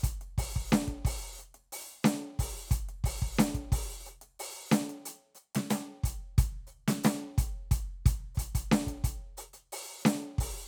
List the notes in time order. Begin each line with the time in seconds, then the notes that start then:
0.01 closed hi-hat, kick, hi-hat pedal
0.21 closed hi-hat
0.38 open hi-hat, kick
0.56 kick
0.69 closed hi-hat, snare, hi-hat pedal
0.88 kick, closed hi-hat
1.05 open hi-hat, kick
1.38 closed hi-hat, hi-hat pedal
1.54 closed hi-hat
1.72 open hi-hat
2.03 closed hi-hat, snare, hi-hat pedal
2.39 open hi-hat, kick, hi-hat pedal
2.69 closed hi-hat, kick, hi-hat pedal
2.89 closed hi-hat
3.04 open hi-hat, kick
3.22 kick
3.36 closed hi-hat, snare, hi-hat pedal
3.55 kick, closed hi-hat
3.72 open hi-hat, kick
4.06 open hi-hat, hi-hat pedal
4.21 closed hi-hat
4.39 open hi-hat
4.71 closed hi-hat, snare, hi-hat pedal
4.89 closed hi-hat
5.06 open hi-hat
5.35 hi-hat pedal
5.55 snare, closed hi-hat
5.70 closed hi-hat, snare
6.04 closed hi-hat, kick
6.38 closed hi-hat, kick
6.67 hi-hat pedal
6.88 closed hi-hat, snare
7.04 closed hi-hat, snare
7.38 closed hi-hat, kick
7.71 closed hi-hat, kick
8.06 open hi-hat, kick
8.35 kick, hi-hat pedal
8.39 closed hi-hat
8.55 closed hi-hat, kick
8.72 snare
8.87 kick, closed hi-hat
9.04 open hi-hat, kick
9.37 open hi-hat, hi-hat pedal
9.53 closed hi-hat
9.72 open hi-hat
10.02 closed hi-hat, snare, hi-hat pedal
10.22 closed hi-hat
10.38 open hi-hat, kick